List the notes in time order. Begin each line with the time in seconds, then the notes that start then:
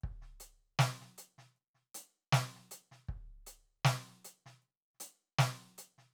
0.01 kick, closed hi-hat
0.22 snare
0.32 snare
0.40 closed hi-hat
0.79 snare
1.01 snare
1.18 closed hi-hat
1.38 snare
1.56 closed hi-hat
1.75 snare
1.95 closed hi-hat
2.33 snare
2.56 snare
2.71 closed hi-hat
2.92 snare
3.07 kick, closed hi-hat
3.47 closed hi-hat
3.85 snare
4.09 snare
4.25 closed hi-hat
4.46 snare
4.62 closed hi-hat
4.94 snare
5.00 closed hi-hat
5.39 snare
5.78 closed hi-hat
5.98 snare